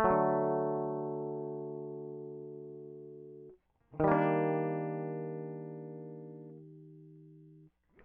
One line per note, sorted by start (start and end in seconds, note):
0.00 3.53 A3
0.05 3.57 F#3
0.12 3.54 D3
4.01 7.71 D#3
4.01 7.68 G3
4.08 6.63 A#3
4.08 6.53 D4